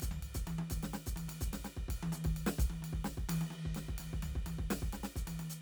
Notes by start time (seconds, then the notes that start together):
0.00 kick, hi-hat pedal, ride
0.12 floor tom
0.23 ride
0.35 kick, hi-hat pedal, ride
0.47 high tom, ride
0.59 high tom
0.70 kick, hi-hat pedal, ride
0.83 snare, ride
0.94 snare, ride
1.07 kick, hi-hat pedal
1.16 high tom, ride
1.29 high tom, ride
1.41 kick, hi-hat pedal
1.53 snare, ride
1.65 snare, ride
1.77 kick
1.89 kick, ride
2.03 high tom
2.12 hi-hat pedal, high tom
2.25 kick, ride
2.37 ride
2.47 snare
2.59 kick, hi-hat pedal, ride
2.70 high tom
2.83 high tom, ride
2.93 kick
3.05 snare, ride
3.18 kick
3.29 high tom, ride
3.41 high tom, ride
3.51 high tom, ride
3.66 kick
3.75 snare, ride
3.89 kick
3.98 high tom, ride
4.13 kick
4.23 floor tom, ride
4.36 kick
4.46 high tom, ride
4.59 kick
4.71 snare, ride
4.82 kick
4.93 snare, ride
5.05 ride
5.16 kick, hi-hat pedal
5.27 high tom, ride
5.40 high tom, ride
5.50 hi-hat pedal